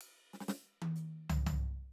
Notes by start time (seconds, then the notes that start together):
0.01 ride
0.33 snare
0.41 snare
0.48 snare
0.82 high tom
0.96 hi-hat pedal
1.30 floor tom
1.47 floor tom